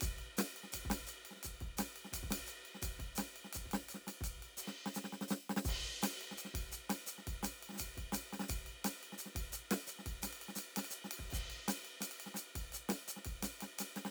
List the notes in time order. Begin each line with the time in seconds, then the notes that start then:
0.01 kick, hi-hat pedal, ride
0.19 ride
0.37 snare, hi-hat pedal, ride
0.56 ride
0.64 snare
0.72 kick, hi-hat pedal, ride
0.85 kick
0.90 snare, ride
1.07 hi-hat pedal, ride
1.25 ride
1.31 snare
1.36 snare
1.43 kick, hi-hat pedal, ride
1.61 kick, ride
1.77 snare, hi-hat pedal, ride
1.96 ride
2.05 snare
2.11 kick, snare, hi-hat pedal, ride
2.23 kick
2.31 snare, ride
2.47 hi-hat pedal, ride
2.65 ride
2.75 snare
2.82 kick, hi-hat pedal, ride
2.99 kick, ride
3.16 snare, hi-hat pedal, ride
3.36 ride
3.45 snare
3.53 kick, hi-hat pedal, ride
3.66 kick
3.71 snare, ride
3.89 hi-hat pedal, ride
3.94 snare
4.07 snare, ride
4.21 kick, hi-hat pedal, ride
4.43 ride
4.57 hi-hat pedal, ride
4.68 snare
4.86 snare
4.94 snare, hi-hat pedal
5.04 snare
5.13 snare
5.21 snare
5.28 snare, hi-hat pedal
5.50 snare
5.57 snare
5.65 kick, hi-hat pedal, ride
6.02 snare, hi-hat pedal, ride
6.21 ride
6.29 kick, snare
6.38 hi-hat pedal, ride
6.45 snare
6.54 kick, ride
6.72 hi-hat pedal, ride
6.90 snare, ride
7.07 hi-hat pedal, ride
7.18 snare
7.27 kick, ride
7.43 snare, hi-hat pedal, ride
7.63 ride
7.69 snare
7.73 snare
7.75 snare
7.76 kick, snare, hi-hat pedal, ride
7.97 kick, ride
8.12 snare, hi-hat pedal, ride
8.33 snare, ride
8.40 snare
8.43 snare
8.49 kick, hi-hat pedal, ride
8.66 ride
8.85 snare, hi-hat pedal, ride
9.03 ride
9.12 snare
9.18 hi-hat pedal, ride
9.26 snare
9.35 kick, ride
9.52 hi-hat pedal, ride
9.71 snare, ride
9.87 hi-hat pedal, ride
9.99 snare
10.06 kick, ride
10.22 snare, hi-hat pedal, ride
10.33 ride
10.42 ride
10.49 snare
10.55 snare, hi-hat pedal, ride
10.76 snare, ride
10.85 ride
10.91 hi-hat pedal
10.95 ride
11.04 snare
11.11 ride
11.19 kick
11.31 kick, hi-hat pedal, ride
11.50 ride
11.68 snare, hi-hat pedal, ride
11.85 ride
12.01 snare, hi-hat pedal, ride
12.11 ride
12.20 ride
12.26 snare
12.34 snare, hi-hat pedal, ride
12.55 kick, ride
12.72 hi-hat pedal, ride
12.89 snare, ride
13.08 hi-hat pedal, ride
13.17 snare
13.25 kick, ride
13.43 snare, hi-hat pedal, ride
13.61 snare, ride
13.79 snare, hi-hat pedal, ride
13.96 snare, ride
14.05 snare